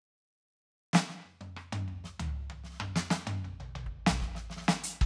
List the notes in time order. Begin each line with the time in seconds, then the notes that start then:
0.93 snare
0.95 snare
1.09 snare
1.25 high tom
1.41 high tom
1.57 cross-stick
1.73 high tom
1.88 mid tom
2.04 snare
2.20 mid tom
2.50 mid tom
2.64 snare
2.69 snare
2.73 snare
2.76 snare
2.80 high tom
2.96 snare
3.11 snare
3.27 high tom
3.44 floor tom
3.60 floor tom
3.75 floor tom
3.86 kick
4.06 snare, floor tom
4.20 kick, snare
4.35 snare
4.50 snare
4.56 snare
4.61 snare
4.66 snare
4.68 snare
4.84 closed hi-hat
5.01 kick